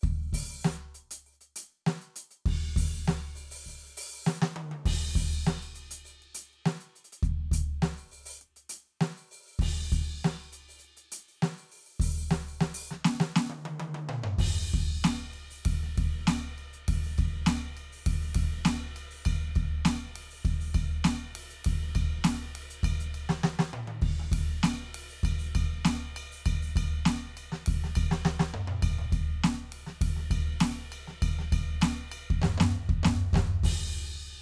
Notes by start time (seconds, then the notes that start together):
0.01 open hi-hat, kick
0.33 open hi-hat, kick
0.52 open hi-hat
0.65 snare
0.75 closed hi-hat, hi-hat pedal
0.95 closed hi-hat
1.11 closed hi-hat
1.27 open hi-hat
1.33 hi-hat pedal
1.41 closed hi-hat
1.56 closed hi-hat
1.72 closed hi-hat
1.87 snare
2.01 closed hi-hat
2.16 closed hi-hat
2.31 closed hi-hat
2.46 kick, crash
2.62 open hi-hat
2.76 open hi-hat, kick
2.94 open hi-hat
3.08 snare
3.22 open hi-hat
3.35 open hi-hat
3.51 open hi-hat
3.66 open hi-hat, kick
3.74 kick
3.83 open hi-hat
3.97 open hi-hat
4.12 open hi-hat
4.27 snare
4.42 snare
4.56 high tom
4.71 high tom
4.86 kick, crash
5.00 open hi-hat
5.16 open hi-hat, kick
5.32 open hi-hat
5.46 snare, hi-hat pedal
5.62 closed hi-hat
5.75 closed hi-hat
5.91 closed hi-hat, kick
6.05 open hi-hat
6.10 hi-hat pedal
6.22 closed hi-hat
6.35 closed hi-hat
6.53 closed hi-hat
6.66 snare
6.80 closed hi-hat
6.96 closed hi-hat
7.04 closed hi-hat
7.12 closed hi-hat
7.23 open hi-hat, kick, hi-hat pedal
7.52 closed hi-hat, kick
7.67 open hi-hat
7.82 snare
7.96 open hi-hat
8.12 open hi-hat
8.26 open hi-hat
8.35 hi-hat pedal
8.41 closed hi-hat
8.56 closed hi-hat
8.70 closed hi-hat
8.87 open hi-hat
9.01 snare
9.16 open hi-hat
9.31 open hi-hat
9.46 open hi-hat
9.59 kick, crash
9.78 open hi-hat
9.92 closed hi-hat, kick
10.10 closed hi-hat
10.25 snare
10.53 closed hi-hat
10.69 open hi-hat
10.79 hi-hat pedal
10.85 closed hi-hat
10.97 closed hi-hat
11.12 closed hi-hat
11.28 open hi-hat
11.43 snare
11.56 open hi-hat
11.71 open hi-hat
11.87 open hi-hat
12.00 open hi-hat, kick
12.17 open hi-hat
12.31 snare
12.47 open hi-hat
12.61 snare
12.75 open hi-hat
12.91 snare
13.05 snare
13.20 snare
13.36 snare
13.50 high tom
13.66 high tom
13.80 high tom
13.95 high tom
14.09 mid tom
14.24 floor tom
14.39 kick, crash
14.74 kick
15.04 snare, ride bell
15.34 ride
15.51 open hi-hat
15.65 kick, open hi-hat, ride
15.83 snare
15.98 kick, snare, ride
16.27 snare, ride bell
16.58 ride bell
16.73 closed hi-hat
16.88 kick, open hi-hat, ride
17.04 open hi-hat
17.18 kick, snare, ride bell
17.46 snare, ride bell
17.77 ride bell
17.93 open hi-hat
18.07 kick, ride
18.22 open hi-hat
18.35 kick, ride
18.65 snare, ride bell
18.96 ride bell
19.11 open hi-hat
19.25 kick, ride bell
19.56 kick, ride bell
19.85 snare, ride bell
20.16 ride
20.31 open hi-hat
20.45 kick, ride bell
20.61 open hi-hat
20.75 kick, ride bell
21.05 snare, ride bell
21.35 ride
21.50 closed hi-hat
21.65 kick, ride
21.95 kick, ride bell
22.24 snare, ride
22.55 ride
22.70 closed hi-hat
22.83 kick, ride bell
23.00 closed hi-hat
23.14 ride bell
23.29 snare
23.44 snare
23.59 snare
23.73 mid tom
23.88 high tom
24.02 kick, crash
24.20 high tom
24.32 kick, ride
24.63 snare, ride bell
24.95 ride
25.09 open hi-hat
25.23 kick, ride bell
25.39 open hi-hat
25.55 kick, ride bell
25.85 snare, ride bell
26.16 ride bell
26.32 open hi-hat
26.46 kick, ride bell
26.62 open hi-hat
26.76 kick, ride bell
27.06 snare, ride bell
27.37 ride bell
27.52 snare
27.66 kick, ride
27.84 snare
27.96 kick, ride bell
28.11 snare
28.25 snare
28.40 snare
28.54 floor tom
28.68 mid tom
28.83 kick, ride bell
28.99 mid tom
29.12 kick, ride bell
29.44 snare
29.72 ride
29.87 snare
30.01 kick, ride
30.17 snare
30.31 kick, ride bell
30.61 snare, ride
30.92 ride bell
31.08 snare
31.22 kick, ride bell
31.39 snare
31.52 kick, ride bell
31.82 snare, ride bell
32.12 ride bell
32.30 kick
32.42 snare, floor tom
32.58 snare, floor tom
32.89 kick
33.03 snare, floor tom
33.33 kick, snare, floor tom
33.64 open hi-hat, kick, crash